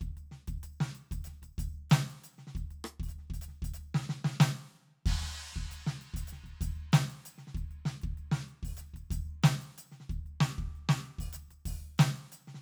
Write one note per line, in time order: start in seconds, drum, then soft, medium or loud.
0.01 kick medium
0.01 percussion soft
0.17 percussion soft
0.31 snare soft
0.48 kick medium
0.48 percussion medium
0.63 percussion medium
0.80 snare medium
0.95 percussion soft
1.11 kick medium
1.11 percussion medium
1.24 snare soft
1.24 percussion medium
1.42 kick soft
1.42 percussion soft
1.58 kick medium
1.58 percussion medium
1.90 snare loud
1.90 percussion soft
2.10 percussion soft
2.24 percussion medium
2.38 snare soft
2.47 snare soft
2.55 kick medium
2.55 percussion soft
2.71 percussion soft
2.84 cross-stick medium
3.00 kick medium
3.00 percussion soft
3.09 percussion soft
3.18 snare soft
3.30 kick medium
3.30 percussion soft
3.41 percussion medium
3.48 snare soft
3.62 kick medium
3.62 percussion medium
3.74 percussion medium
3.79 snare soft
3.94 snare medium
4.09 snare medium
4.24 snare medium
4.40 snare loud
5.06 kick medium
5.06 crash loud
5.23 snare soft
5.37 percussion soft
5.53 kick medium
5.53 snare soft
5.71 percussion medium
5.87 snare medium
6.01 percussion soft
6.14 kick medium
6.14 percussion medium
6.27 percussion medium
6.32 snare soft
6.44 kick soft
6.44 percussion soft
6.61 kick medium
6.61 percussion medium
6.92 snare loud
6.92 percussion soft
7.10 percussion soft
7.25 percussion medium
7.38 snare soft
7.47 snare soft
7.55 kick medium
7.55 percussion soft
7.71 percussion soft
7.85 snare medium
8.02 kick medium
8.02 percussion soft
8.17 percussion soft
8.32 snare medium
8.48 percussion soft
8.63 kick medium
8.63 percussion medium
8.77 snare soft
8.77 percussion medium
8.94 kick soft
8.94 percussion soft
9.11 kick medium
9.11 percussion medium
9.43 snare loud
9.43 percussion soft
9.61 percussion soft
9.78 percussion medium
9.92 snare soft
10.00 snare soft
10.09 kick medium
10.09 percussion soft
10.26 percussion soft
10.41 snare loud
10.58 kick medium
10.58 percussion soft
10.75 percussion soft
10.89 snare loud
11.05 percussion soft
11.19 kick medium
11.19 percussion medium
11.33 snare soft
11.33 percussion medium
11.49 kick soft
11.49 percussion soft
11.66 kick medium
11.66 percussion medium
11.98 snare loud
11.98 percussion soft
12.07 snare soft
12.16 percussion soft
12.32 percussion medium
12.47 snare soft
12.54 snare soft